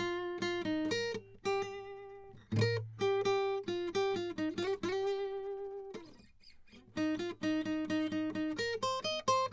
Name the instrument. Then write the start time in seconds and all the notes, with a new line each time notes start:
acoustic guitar
0.01 F4
0.43 F4
0.63 D#4
0.92 A#4
1.13 G4
1.47 G4
2.53 A2
2.57 D3
2.62 A#4
3.02 G4
3.26 G4
3.69 F4
3.96 G4
4.17 F4
4.39 D#4
4.59 G4
4.84 G4
6.98 D#4
7.21 F4
7.44 D#4
7.67 D#4
7.91 D#4
8.13 D#4
8.36 D#4
8.60 A#4
8.84 C5
9.06 D#5
9.29 C5